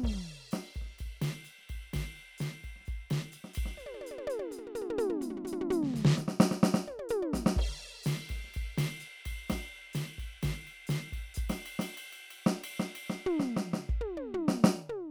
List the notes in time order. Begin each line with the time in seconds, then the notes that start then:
0.01 kick, hi-hat pedal, crash
0.07 kick, snare
0.13 snare
0.17 snare
0.22 snare
0.51 snare, hi-hat pedal, ride
0.74 kick, ride
0.81 kick, snare
0.85 snare
0.89 snare
0.98 kick, hi-hat pedal, ride
1.06 kick
1.22 snare, ride
1.44 hi-hat pedal, ride
1.58 snare
1.69 kick, ride
1.75 kick
1.93 kick, snare, hi-hat pedal, ride
2.00 kick
2.17 ride
2.38 snare, hi-hat pedal, ride
2.60 snare
2.64 kick, ride
2.76 snare
2.81 snare
2.85 kick, hi-hat pedal, ride
3.10 snare, ride
3.32 hi-hat pedal, ride
3.44 snare
3.53 kick, hi-hat pedal, ride
3.66 snare
3.77 kick, hi-hat pedal, high tom
3.86 high tom
3.94 high tom
4.01 high tom
4.06 hi-hat pedal
4.11 high tom
4.18 high tom
4.27 hi-hat pedal, high tom
4.39 high tom
4.51 hi-hat pedal, mid tom
4.58 mid tom
4.66 mid tom
4.75 hi-hat pedal, mid tom
4.81 mid tom
4.90 mid tom
4.98 hi-hat pedal, mid tom
5.09 mid tom
5.20 floor tom, hi-hat pedal
5.30 floor tom
5.36 floor tom
5.44 floor tom, hi-hat pedal
5.52 floor tom
5.60 floor tom
5.70 hi-hat pedal, floor tom
5.83 snare
5.94 kick, snare, hi-hat pedal
6.05 snare
6.17 snare, hi-hat pedal
6.28 snare
6.40 snare, hi-hat pedal
6.51 snare
6.63 snare, hi-hat pedal
6.74 snare
6.87 kick, high tom
6.99 high tom
7.09 hi-hat pedal, mid tom
7.22 high tom
7.33 kick, snare, hi-hat pedal
7.39 kick
7.46 snare
7.56 kick, snare, crash
7.68 kick, snare
8.03 snare, hi-hat pedal, ride
8.16 snare
8.29 kick, snare, ride
8.35 kick, snare
8.44 snare
8.48 snare
8.53 kick, hi-hat pedal, ride
8.62 kick
8.78 snare, ride
9.00 hi-hat pedal
9.25 kick, ride
9.31 kick
9.48 kick, snare, hi-hat pedal, ride
9.56 kick
9.93 snare, hi-hat pedal, ride
10.18 kick, ride
10.23 kick
10.41 kick, snare, hi-hat pedal, ride
10.49 kick
10.67 ride
10.87 snare, hi-hat pedal, ride
11.07 snare
11.12 kick, ride
11.18 kick
11.34 kick, hi-hat pedal, ride
11.43 kick
11.49 snare, ride
11.66 ride
11.79 snare, ride
11.97 ride
12.12 ride
12.30 ride
12.46 snare
12.64 ride
12.80 snare
12.95 ride
13.10 snare
13.26 floor tom
13.40 snare
13.57 snare
13.73 snare
13.89 kick
13.96 kick
14.00 mid tom
14.17 high tom
14.33 floor tom
14.48 snare
14.64 snare
14.89 mid tom